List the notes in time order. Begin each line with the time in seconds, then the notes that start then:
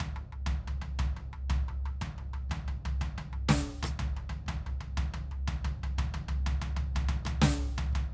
0.00 kick, floor tom
0.16 floor tom
0.32 floor tom
0.46 kick, floor tom
0.68 floor tom
0.82 floor tom
0.99 kick, floor tom
1.16 floor tom
1.33 floor tom
1.50 kick, floor tom
1.68 floor tom
1.86 floor tom
2.01 kick, floor tom
2.18 floor tom
2.33 floor tom
2.50 kick, floor tom
2.68 floor tom
2.85 floor tom
3.01 kick, floor tom
3.18 floor tom
3.33 floor tom
3.49 kick, snare, floor tom
3.83 cross-stick, floor tom
3.99 kick, floor tom
4.17 floor tom
4.29 floor tom
4.46 kick, floor tom
4.66 floor tom
4.81 floor tom
4.97 kick, floor tom
5.14 floor tom
5.31 floor tom
5.48 kick, floor tom
5.65 floor tom
5.83 floor tom
5.98 kick, floor tom
6.14 floor tom
6.28 floor tom
6.46 kick, floor tom
6.62 floor tom
6.77 floor tom
6.95 kick, floor tom
7.09 floor tom
7.25 cross-stick, floor tom
7.42 snare, floor tom
7.47 kick
7.78 floor tom
7.93 kick, floor tom